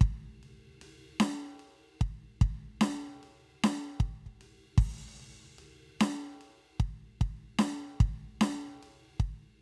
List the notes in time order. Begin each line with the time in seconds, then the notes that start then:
0.01 kick, ride
0.43 ride
0.82 ride
1.20 snare, ride
1.34 snare
1.59 ride
2.01 kick, ride
2.41 kick, ride
2.81 snare, ride
3.21 snare, ride
3.64 snare
4.00 kick, ride
4.26 kick
4.41 ride
4.78 open hi-hat, kick, ride
5.20 ride
5.58 ride
6.00 snare, hi-hat pedal, ride
6.41 ride
6.80 kick, ride
7.21 kick, ride
7.59 snare
7.97 kick, snare
8.03 ride
8.41 snare, ride
8.83 ride
9.20 kick, ride